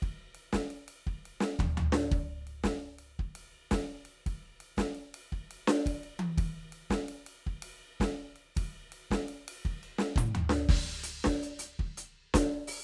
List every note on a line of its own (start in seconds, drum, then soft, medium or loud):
0.02 kick medium
0.02 ride medium
0.35 ride medium
0.52 kick medium
0.52 snare loud
0.52 hi-hat pedal medium
0.70 ride medium
0.88 ride medium
1.07 kick medium
1.26 ride medium
1.41 snare loud
1.59 kick medium
1.59 floor tom loud
1.77 floor tom loud
1.92 snare loud
2.11 kick loud
2.11 ride medium
2.46 ride soft
2.63 kick medium
2.63 snare loud
2.63 hi-hat pedal medium
2.80 ride soft
2.99 ride medium
3.19 kick medium
3.19 crash soft
3.27 ride soft
3.35 ride medium
3.71 kick medium
3.71 snare loud
3.71 hi-hat pedal medium
3.71 ride medium
4.05 ride medium
4.23 kick medium
4.23 ride soft
4.27 ride medium
4.60 ride medium
4.77 kick medium
4.77 snare loud
4.77 hi-hat pedal medium
4.95 ride soft
5.14 ride medium
5.32 kick medium
5.51 ride medium
5.68 snare loud
5.86 kick medium
5.86 ride loud
6.03 ride medium
6.19 high tom loud
6.37 kick loud
6.37 ride loud
6.66 ride soft
6.72 ride medium
6.90 kick medium
6.90 snare loud
6.90 hi-hat pedal medium
7.08 ride medium
7.27 ride medium
7.43 kick medium
7.43 ride soft
7.62 ride loud
7.90 ride soft
8.00 kick medium
8.00 snare loud
8.00 ride medium
8.36 ride soft
8.55 kick medium
8.55 hi-hat pedal soft
8.55 ride loud
8.92 ride medium
9.11 kick medium
9.11 snare loud
9.28 ride medium
9.48 ride loud
9.65 kick medium
9.83 ride bell medium
9.99 snare loud
10.16 kick loud
10.16 mid tom loud
10.35 floor tom loud
10.49 snare loud
10.69 kick loud
10.69 hi-hat pedal medium
10.69 crash loud
11.03 closed hi-hat loud
11.24 kick medium
11.24 snare loud
11.43 closed hi-hat medium
11.59 closed hi-hat loud
11.79 kick medium
11.97 closed hi-hat loud
12.34 closed hi-hat loud
12.34 kick medium
12.34 snare loud
12.67 open hi-hat loud